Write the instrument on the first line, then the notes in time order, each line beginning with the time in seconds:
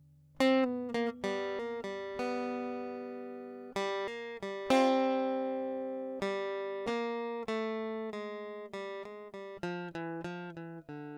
acoustic guitar
0.41 C4
0.65 B3
0.96 A#3
1.25 G3 B3
1.61 A#3
1.85 G3
2.21 B3
3.77 G3
4.09 A#3
4.44 G3
4.71 C4 F4
6.21 G3 B3
6.89 A#3
7.50 A3
8.15 G#3
8.75 G3
9.07 G#3
9.35 G3
9.64 F3
9.96 E3
10.26 F3
10.58 E3
10.90 D3